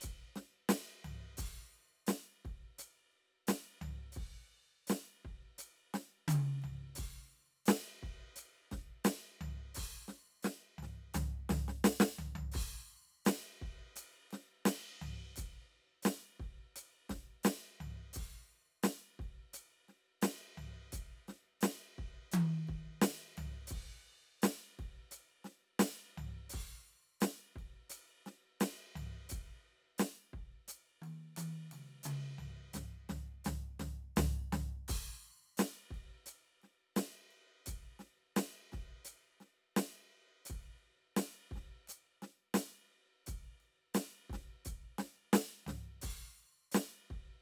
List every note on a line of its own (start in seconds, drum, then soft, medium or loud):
0.01 kick soft
0.01 hi-hat pedal medium
0.01 ride soft
0.36 snare soft
0.36 ride soft
0.69 snare loud
0.69 hi-hat pedal medium
0.69 ride soft
1.05 floor tom soft
1.05 ride soft
1.37 kick soft
1.37 hi-hat pedal medium
1.37 crash soft
2.07 snare loud
2.07 hi-hat pedal medium
2.07 ride medium
2.45 kick soft
2.45 ride soft
2.79 hi-hat pedal medium
2.79 ride soft
3.12 ride soft
3.47 snare loud
3.47 hi-hat pedal medium
3.47 ride medium
3.81 floor tom medium
3.81 ride soft
4.12 hi-hat pedal soft
4.12 crash soft
4.16 kick soft
4.87 snare loud
4.87 hi-hat pedal medium
4.87 ride medium
5.25 kick soft
5.58 hi-hat pedal medium
5.58 ride medium
5.94 snare medium
5.94 ride soft
6.28 hi-hat pedal medium
6.28 mid tom loud
6.28 ride medium
6.62 floor tom soft
6.62 ride soft
6.95 kick soft
6.95 hi-hat pedal medium
6.95 crash soft
7.66 snare loud
7.66 hi-hat pedal medium
7.66 ride soft
8.03 kick soft
8.03 ride soft
8.36 hi-hat pedal medium
8.36 ride soft
8.72 kick soft
8.72 snare soft
9.04 snare loud
9.04 hi-hat pedal medium
9.04 ride soft
9.41 floor tom medium
9.75 kick soft
9.75 hi-hat pedal medium
9.75 crash medium
10.08 snare soft
10.43 snare medium
10.43 hi-hat pedal soft
10.43 ride soft
10.78 floor tom soft
10.83 snare soft
11.14 snare medium
11.14 floor tom medium
11.14 hi-hat pedal medium
11.49 snare medium
11.49 floor tom medium
11.68 snare soft
11.84 snare loud
11.84 hi-hat pedal medium
12.00 snare loud
12.19 floor tom medium
12.35 floor tom medium
12.52 kick medium
12.52 hi-hat pedal soft
12.52 crash medium
13.25 snare loud
13.25 hi-hat pedal medium
13.25 ride soft
13.62 kick soft
13.66 ride soft
13.96 hi-hat pedal medium
13.96 ride medium
14.16 ride soft
14.31 snare soft
14.31 ride soft
14.66 snare loud
14.66 hi-hat pedal medium
14.66 ride medium
15.02 floor tom soft
15.02 ride soft
15.36 kick soft
15.36 hi-hat pedal medium
15.36 ride soft
15.70 ride soft
16.03 snare loud
16.03 hi-hat pedal medium
16.03 ride medium
16.40 kick soft
16.40 ride soft
16.76 hi-hat pedal medium
16.76 ride medium
17.09 kick soft
17.09 snare medium
17.09 ride soft
17.43 snare loud
17.43 hi-hat pedal medium
17.43 ride soft
17.80 floor tom soft
17.80 ride soft
18.13 kick soft
18.13 hi-hat pedal medium
18.13 crash soft
18.83 snare loud
18.83 hi-hat pedal medium
18.83 ride medium
19.19 kick soft
19.19 ride soft
19.53 hi-hat pedal medium
19.53 ride medium
19.89 snare soft
19.89 ride soft
20.22 snare loud
20.22 hi-hat pedal medium
20.22 ride soft
20.58 floor tom soft
20.58 ride soft
20.92 kick soft
20.92 hi-hat pedal medium
20.92 ride soft
21.28 snare soft
21.28 ride soft
21.61 snare loud
21.61 hi-hat pedal medium
21.61 ride soft
21.98 kick soft
22.32 hi-hat pedal medium
22.32 high tom loud
22.32 ride soft
22.68 kick soft
22.68 ride soft
23.02 snare loud
23.02 hi-hat pedal medium
23.02 ride soft
23.37 floor tom medium
23.37 ride soft
23.67 kick soft
23.67 hi-hat pedal medium
23.67 crash soft
24.42 snare loud
24.42 hi-hat pedal medium
24.42 ride medium
24.79 kick soft
24.79 ride soft
25.11 hi-hat pedal medium
25.11 ride soft
25.44 snare soft
25.44 ride soft
25.79 snare loud
25.79 hi-hat pedal medium
25.79 ride medium
26.18 floor tom soft
26.18 ride soft
26.50 hi-hat pedal medium
26.50 crash soft
26.54 kick soft
27.21 snare loud
27.21 hi-hat pedal medium
27.21 ride medium
27.56 kick soft
27.56 ride soft
27.90 hi-hat pedal medium
27.90 ride medium
28.26 snare soft
28.26 ride soft
28.60 snare loud
28.60 hi-hat pedal medium
28.60 ride soft
28.96 floor tom soft
28.96 ride soft
29.29 kick soft
29.29 hi-hat pedal medium
29.29 ride medium
29.98 snare loud
29.98 hi-hat pedal medium
29.98 ride soft
30.33 kick soft
30.68 hi-hat pedal medium
30.68 ride soft
31.02 high tom soft
31.02 ride soft
31.37 hi-hat pedal medium
31.37 high tom medium
31.37 ride medium
31.71 mid tom soft
31.71 ride soft
32.03 hi-hat pedal medium
32.03 mid tom medium
32.03 ride soft
32.39 floor tom soft
32.74 snare soft
32.74 floor tom soft
32.74 hi-hat pedal medium
33.09 snare soft
33.09 floor tom medium
33.44 snare medium
33.44 floor tom medium
33.44 hi-hat pedal medium
33.80 snare medium
33.80 floor tom medium
34.16 snare loud
34.16 floor tom medium
34.16 hi-hat pedal medium
34.52 snare medium
34.52 floor tom medium
34.88 kick medium
34.88 hi-hat pedal medium
34.88 crash medium
35.57 snare loud
35.57 hi-hat pedal medium
35.57 ride medium
35.91 kick soft
35.91 ride soft
36.26 hi-hat pedal medium
36.26 ride soft
36.62 snare soft
36.62 ride soft
36.96 snare loud
36.96 hi-hat pedal medium
36.96 ride soft
37.31 ride soft
37.66 kick soft
37.66 hi-hat pedal medium
37.66 ride medium
37.99 snare soft
37.99 ride soft
38.36 snare loud
38.36 hi-hat pedal medium
38.36 ride soft
38.72 kick soft
38.72 snare soft
38.72 ride soft
39.05 hi-hat pedal medium
39.05 ride soft
39.40 snare soft
39.40 ride soft
39.76 snare loud
39.76 hi-hat pedal medium
39.76 ride soft
40.11 ride soft
40.45 hi-hat pedal medium
40.45 ride medium
40.50 kick soft
40.79 ride soft
41.17 snare loud
41.17 hi-hat pedal medium
41.17 ride medium
41.51 kick soft
41.51 ride soft
41.56 snare soft
41.88 hi-hat pedal medium
41.88 ride soft
42.22 snare soft
42.22 ride soft
42.54 snare loud
42.54 hi-hat pedal medium
42.54 ride medium
43.26 kick soft
43.26 hi-hat pedal medium
43.26 ride soft
43.60 ride soft
43.94 snare loud
43.94 hi-hat pedal medium
43.94 ride medium
44.30 kick soft
44.30 snare soft
44.30 ride soft
44.65 kick soft
44.65 hi-hat pedal medium
44.65 ride soft
44.99 snare medium
44.99 ride soft
45.33 snare loud
45.33 hi-hat pedal medium
45.33 ride medium
45.67 snare medium
45.67 floor tom soft
46.02 kick soft
46.02 hi-hat pedal medium
46.02 crash soft
46.72 snare loud
46.72 hi-hat pedal medium
46.72 ride medium
47.10 kick soft
47.10 ride soft